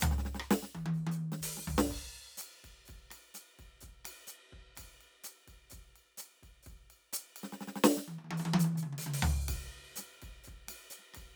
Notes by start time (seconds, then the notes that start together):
0.01 hi-hat pedal, floor tom
0.12 snare
0.19 snare
0.26 snare
0.35 snare
0.40 cross-stick
0.51 snare
0.63 snare
0.75 kick, high tom
0.86 high tom
0.94 kick, hi-hat pedal
0.99 high tom
1.07 open hi-hat, high tom
1.12 hi-hat pedal
1.20 high tom
1.32 snare
1.40 kick, closed hi-hat, hi-hat pedal
1.58 snare
1.68 kick, floor tom
1.75 kick, snare
1.86 snare
1.90 kick, crash
1.96 kick
2.38 cross-stick, hi-hat pedal, ride
2.64 kick, ride
2.86 kick, hi-hat pedal, ride
2.95 kick
3.11 cross-stick, snare, ride
3.35 snare, hi-hat pedal, ride
3.59 kick, ride
3.81 kick, hi-hat pedal, ride
3.88 kick
4.05 cross-stick, ride
4.28 hi-hat pedal
4.53 kick
4.58 kick
4.76 kick, cross-stick, hi-hat pedal, ride
4.84 kick
5.01 ride
5.24 cross-stick, hi-hat pedal, ride
5.48 kick, ride
5.70 kick, hi-hat pedal, ride
5.78 kick
5.96 ride
6.18 cross-stick, snare, hi-hat pedal, ride
6.43 kick, ride
6.63 kick, hi-hat pedal, ride
6.72 kick
6.91 ride
7.13 hi-hat pedal, ride
7.37 ride
7.44 snare
7.53 snare
7.61 snare
7.68 snare
7.76 snare
7.84 snare
7.97 snare
8.08 high tom
8.19 high tom
8.25 high tom
8.31 high tom
8.38 hi-hat pedal, high tom
8.46 high tom
8.54 high tom
8.60 hi-hat pedal
8.65 high tom
8.76 hi-hat pedal, mid tom
8.83 mid tom
8.93 mid tom
8.99 closed hi-hat, hi-hat pedal
9.07 mid tom
9.14 closed hi-hat
9.23 floor tom
9.49 kick, ride
9.56 kick
9.96 snare, hi-hat pedal, ride
10.22 kick, ride
10.29 kick
10.44 kick, hi-hat pedal, ride
10.53 kick
10.68 snare, ride
10.91 hi-hat pedal, ride
10.99 snare
11.14 kick, cross-stick, ride
11.22 kick